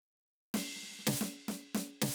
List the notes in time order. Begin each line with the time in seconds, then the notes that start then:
0.54 snare, ride
0.76 snare
0.83 snare
0.88 snare
0.91 snare
0.99 snare
1.05 snare
1.07 snare
1.21 snare
1.48 snare
1.75 snare
2.02 snare